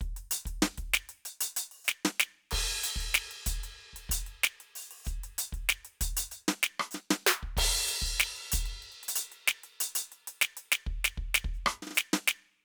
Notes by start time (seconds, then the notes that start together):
0.01 kick, closed hi-hat
0.17 closed hi-hat
0.31 closed hi-hat
0.46 kick, closed hi-hat
0.62 snare
0.78 kick, closed hi-hat
0.94 snare
1.09 closed hi-hat
1.25 closed hi-hat
1.41 closed hi-hat
1.57 closed hi-hat
1.71 open hi-hat
1.85 snare, hi-hat pedal
2.05 snare
2.20 snare
2.51 kick, crash
2.68 closed hi-hat
2.84 closed hi-hat
2.96 kick
3.01 kick, closed hi-hat
3.15 snare
3.31 closed hi-hat
3.46 closed hi-hat, kick
3.64 closed hi-hat
3.81 closed hi-hat
3.93 kick, closed hi-hat
4.10 closed hi-hat, kick
4.27 closed hi-hat
4.44 snare
4.60 closed hi-hat
4.76 open hi-hat
4.91 open hi-hat
5.05 closed hi-hat, kick, hi-hat pedal
5.24 closed hi-hat
5.38 closed hi-hat
5.53 kick, closed hi-hat
5.69 snare
5.85 closed hi-hat
6.01 closed hi-hat, kick
6.17 closed hi-hat
6.32 closed hi-hat
6.48 snare
6.63 snare
6.80 cross-stick
6.91 snare, hi-hat pedal
7.11 snare
7.27 snare
7.43 kick
7.57 kick, crash
7.73 closed hi-hat
7.88 closed hi-hat
8.02 kick
8.07 closed hi-hat
8.20 snare
8.36 closed hi-hat
8.52 closed hi-hat, kick
8.66 closed hi-hat
8.82 closed hi-hat
8.92 closed hi-hat
9.03 closed hi-hat
9.09 closed hi-hat
9.16 closed hi-hat
9.32 closed hi-hat
9.48 snare
9.64 closed hi-hat
9.81 closed hi-hat
9.95 closed hi-hat
10.12 closed hi-hat
10.28 closed hi-hat
10.42 snare
10.57 closed hi-hat
10.72 snare
10.87 kick
11.05 snare
11.18 kick
11.35 snare
11.45 kick
11.54 hi-hat pedal
11.66 cross-stick, closed hi-hat
11.83 snare
11.87 snare
11.91 snare
11.95 snare, hi-hat pedal
12.13 snare
12.28 snare